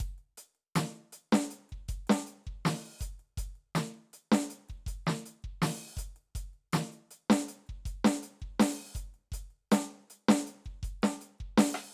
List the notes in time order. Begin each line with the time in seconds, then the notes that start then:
0.00 kick, closed hi-hat
0.18 closed hi-hat
0.38 closed hi-hat
0.55 closed hi-hat
0.75 closed hi-hat, snare
0.94 closed hi-hat
1.12 closed hi-hat
1.32 snare, closed hi-hat
1.50 closed hi-hat
1.69 kick, closed hi-hat
1.88 closed hi-hat, kick
2.07 snare, closed hi-hat
2.26 closed hi-hat
2.44 kick, closed hi-hat
2.65 open hi-hat, snare
3.00 closed hi-hat, kick, hi-hat pedal
3.19 closed hi-hat
3.38 closed hi-hat, kick
3.55 closed hi-hat
3.75 closed hi-hat, snare
3.94 closed hi-hat
4.13 closed hi-hat
4.32 snare, closed hi-hat
4.50 closed hi-hat
4.69 kick, closed hi-hat
4.86 closed hi-hat, kick
5.06 snare, closed hi-hat
5.26 closed hi-hat
5.43 kick, closed hi-hat
5.62 open hi-hat, snare
5.97 closed hi-hat, kick, hi-hat pedal
6.16 closed hi-hat
6.35 closed hi-hat, kick
6.53 closed hi-hat
6.73 closed hi-hat, snare
6.92 closed hi-hat
7.11 closed hi-hat
7.30 snare, closed hi-hat
7.48 closed hi-hat
7.67 kick, closed hi-hat
7.85 closed hi-hat, kick
8.05 closed hi-hat, snare
8.23 closed hi-hat
8.40 kick, closed hi-hat
8.60 open hi-hat, snare
8.94 closed hi-hat, kick, hi-hat pedal
9.14 closed hi-hat
9.32 closed hi-hat, kick
9.50 closed hi-hat
9.71 closed hi-hat, snare
9.90 closed hi-hat
10.10 closed hi-hat
10.29 snare, closed hi-hat
10.46 closed hi-hat
10.65 kick, closed hi-hat
10.83 closed hi-hat, kick
11.02 snare, closed hi-hat
11.21 closed hi-hat
11.38 kick, closed hi-hat
11.58 open hi-hat, snare
11.74 cross-stick